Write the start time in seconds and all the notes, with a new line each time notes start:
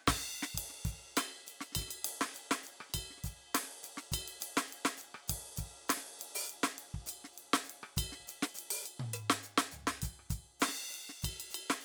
0.08 kick, snare, hi-hat pedal, crash
0.15 kick
0.43 snare
0.55 kick, hi-hat pedal, ride
0.70 snare
0.75 snare
0.78 snare
0.86 kick, hi-hat pedal, ride
0.95 kick
1.17 snare, hi-hat pedal, ride bell
1.47 hi-hat pedal, ride
1.61 snare
1.73 snare, ride bell
1.77 kick, hi-hat pedal
1.82 kick, snare
1.88 snare, ride bell
2.05 hi-hat pedal, ride
2.22 snare
2.26 cross-stick
2.35 hi-hat pedal, ride
2.52 snare
2.64 hi-hat pedal, ride
2.81 cross-stick
2.90 snare
2.94 kick, hi-hat pedal, ride bell
3.11 snare
3.18 snare
3.25 kick, hi-hat pedal, ride
3.33 kick
3.55 snare, hi-hat pedal, ride
3.64 snare
3.84 hi-hat pedal, ride
3.98 snare
4.12 kick, snare, hi-hat pedal, ride bell
4.21 snare
4.25 snare, ride
4.41 hi-hat pedal, ride
4.58 snare
4.68 hi-hat pedal
4.73 ride
4.86 snare
4.98 hi-hat pedal
5.02 ride
5.15 cross-stick
5.28 kick, snare, hi-hat pedal, ride
5.42 cross-stick
5.57 kick, hi-hat pedal, ride
5.68 kick
5.89 snare, hi-hat pedal, ride
5.98 snare
6.20 hi-hat pedal, ride
6.35 open hi-hat
6.46 hi-hat pedal
6.50 ride
6.64 snare
6.79 ride
6.95 kick
7.07 hi-hat pedal, ride bell
7.25 snare
7.34 hi-hat pedal
7.38 ride
7.54 snare
7.65 hi-hat pedal
7.70 ride
7.84 cross-stick
7.97 kick, hi-hat pedal, ride bell
8.04 kick
8.08 kick
8.13 snare
8.21 kick
8.28 hi-hat pedal, ride
8.43 snare
8.55 hi-hat pedal
8.59 ride
8.71 closed hi-hat
8.84 hi-hat pedal, ride bell
9.00 mid tom
9.14 hi-hat pedal, percussion
9.30 snare
9.43 hi-hat pedal
9.58 snare
9.72 floor tom, hi-hat pedal
9.88 snare
10.02 kick, hi-hat pedal, ride bell
10.10 kick
10.13 kick
10.20 cross-stick
10.27 cross-stick, snare, hi-hat pedal
10.31 kick, ride bell
10.37 kick
10.40 kick
10.60 snare, hi-hat pedal, crash
10.69 snare
10.90 hi-hat pedal
10.95 ride
11.10 snare
11.23 kick, snare, hi-hat pedal, ride bell
11.30 kick, snare
11.40 ride bell
11.51 hi-hat pedal
11.55 ride bell
11.70 snare
11.81 hi-hat pedal